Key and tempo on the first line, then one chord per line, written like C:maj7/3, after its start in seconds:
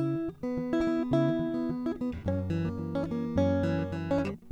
G# minor, 107 BPM
0.00 C#:min7(*5)
2.24 F#:7